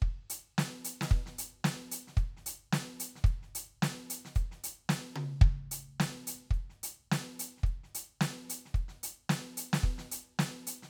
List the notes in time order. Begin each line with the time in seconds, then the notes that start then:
0.03 kick
0.31 closed hi-hat
0.59 snare
0.86 closed hi-hat
1.02 snare
1.12 kick, closed hi-hat
1.27 snare
1.39 closed hi-hat
1.65 snare
1.92 closed hi-hat
2.08 snare
2.18 kick, closed hi-hat
2.38 snare
2.47 closed hi-hat
2.74 snare
3.01 closed hi-hat
3.16 snare
3.25 kick, closed hi-hat
3.43 snare
3.56 closed hi-hat
3.83 snare
4.11 closed hi-hat
4.26 snare
4.36 closed hi-hat, kick
4.52 snare
4.65 closed hi-hat
4.90 snare
5.17 high tom
5.42 kick
5.72 closed hi-hat
6.01 snare
6.28 closed hi-hat
6.52 kick, closed hi-hat
6.70 snare
6.84 closed hi-hat
7.12 snare
7.40 closed hi-hat
7.58 snare
7.64 kick, closed hi-hat
7.84 snare
7.96 closed hi-hat
8.22 snare
8.51 closed hi-hat
8.66 snare
8.75 kick, closed hi-hat
8.89 snare
9.04 closed hi-hat
9.30 snare
9.58 closed hi-hat
9.74 snare
9.84 kick
9.99 snare
10.12 closed hi-hat
10.40 snare
10.68 closed hi-hat
10.83 snare